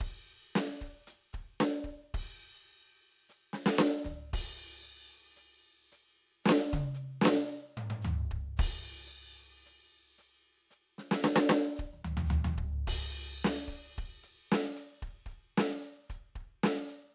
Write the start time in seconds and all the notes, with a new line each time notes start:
0.01 kick, crash
0.25 closed hi-hat
0.56 closed hi-hat, snare
0.81 kick, closed hi-hat
1.08 closed hi-hat
1.33 closed hi-hat, kick
1.61 open hi-hat, snare
1.84 kick, open hi-hat
2.15 kick, crash
3.30 hi-hat pedal
3.54 snare
3.66 snare
3.79 snare
4.05 kick, floor tom
4.34 kick, crash
4.83 hi-hat pedal
5.37 hi-hat pedal
5.92 hi-hat pedal
6.45 snare, hi-hat pedal
6.49 snare
6.73 kick, high tom
6.95 hi-hat pedal
7.22 snare
7.26 snare
7.47 hi-hat pedal
7.78 mid tom
7.91 mid tom
8.02 floor tom, hi-hat pedal
8.31 kick
8.57 kick, hi-hat pedal, crash
9.07 hi-hat pedal
9.66 hi-hat pedal
10.19 hi-hat pedal
10.71 hi-hat pedal
10.99 snare
11.12 snare
11.23 snare, hi-hat pedal
11.36 snare
11.50 snare
11.76 kick, hi-hat pedal
11.94 floor tom
12.05 floor tom
12.17 floor tom
12.27 hi-hat pedal
12.31 floor tom
12.45 floor tom
12.58 kick
12.87 kick, hi-hat pedal, crash
13.45 closed hi-hat, snare
13.68 closed hi-hat, kick
13.98 closed hi-hat, kick
14.24 closed hi-hat
14.52 snare
14.77 closed hi-hat
15.02 closed hi-hat, kick
15.26 closed hi-hat, kick
15.58 snare
15.83 closed hi-hat
16.10 closed hi-hat, kick
16.36 closed hi-hat, kick
16.64 snare
16.89 closed hi-hat